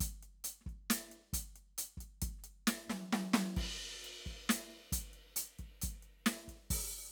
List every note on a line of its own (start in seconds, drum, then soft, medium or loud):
0.01 closed hi-hat loud
0.01 kick soft
0.23 closed hi-hat soft
0.45 closed hi-hat loud
0.61 snare soft
0.67 kick soft
0.67 closed hi-hat soft
0.90 closed hi-hat loud
0.90 snare medium
1.12 closed hi-hat soft
1.34 closed hi-hat loud
1.34 kick soft
1.56 closed hi-hat soft
1.78 closed hi-hat loud
1.98 kick soft
1.98 closed hi-hat medium
2.22 kick soft
2.22 closed hi-hat loud
2.39 snare soft
2.44 closed hi-hat medium
2.68 snare loud
2.68 closed hi-hat loud
2.88 kick soft
2.88 snare medium
2.88 high tom medium
3.13 snare medium
3.13 high tom loud
3.34 snare loud
3.34 high tom loud
3.57 kick medium
3.57 crash loud
4.05 closed hi-hat medium
4.27 kick soft
4.27 closed hi-hat soft
4.50 closed hi-hat loud
4.50 snare loud
4.71 closed hi-hat soft
4.93 closed hi-hat loud
4.93 kick soft
5.07 snare soft
5.14 closed hi-hat soft
5.37 closed hi-hat loud
5.59 kick soft
5.59 closed hi-hat soft
5.82 closed hi-hat loud
5.82 kick soft
5.95 snare soft
6.03 closed hi-hat soft
6.26 snare loud
6.26 closed hi-hat loud
6.48 kick soft
6.48 closed hi-hat soft
6.71 open hi-hat loud
6.71 kick soft